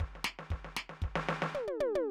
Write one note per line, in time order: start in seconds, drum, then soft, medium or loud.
0.00 kick soft
0.00 snare soft
0.15 snare soft
0.24 snare loud
0.39 snare soft
0.50 kick soft
0.50 snare soft
0.64 snare soft
0.76 snare loud
0.89 snare soft
1.02 kick medium
1.02 snare soft
1.15 snare medium
1.29 snare medium
1.42 snare medium
1.54 high tom loud
1.67 high tom medium
1.80 high tom loud
1.95 high tom loud